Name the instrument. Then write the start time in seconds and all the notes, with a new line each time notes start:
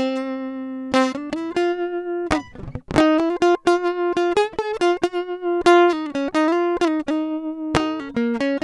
acoustic guitar
0.00 C4
0.96 C4
1.18 D4
1.35 E4
1.58 F4
3.00 D#4
3.21 E4
3.31 F4
3.44 F4
3.69 F4
4.19 F4
4.38 G#4
4.60 G#4 A4
4.70 G#4
4.83 F4
5.05 F#4
5.68 F4
5.92 D#4
6.17 C#4
6.36 D#4
6.50 F4
6.83 D#4
7.10 D#4
7.77 D#4
8.02 C#4
8.19 A#3
8.42 C#4